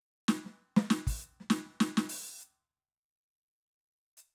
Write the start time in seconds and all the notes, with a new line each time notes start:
0.29 snare
0.46 snare
0.77 snare
0.91 snare
1.07 open hi-hat, kick
1.21 hi-hat pedal
1.41 snare
1.51 snare
1.71 snare
1.81 snare
1.98 snare
2.10 open hi-hat
2.40 hi-hat pedal
4.18 hi-hat pedal